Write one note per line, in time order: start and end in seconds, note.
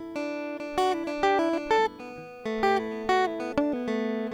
0.00 0.72 E4
0.17 0.60 D4
0.62 1.06 D4
0.80 0.93 F#4
0.93 1.17 E4
1.09 1.53 D4
1.25 1.41 G4
1.41 1.63 E4
1.55 1.82 D4
1.73 1.87 A4
1.88 2.14 E4
2.02 2.90 B3
2.47 3.87 A3
2.65 2.79 G4
2.79 3.08 E4
2.94 3.38 B3
3.11 3.27 F#4
3.27 3.55 E4
3.42 3.57 B3
3.59 3.74 D4
3.75 4.34 B3
3.90 4.32 A3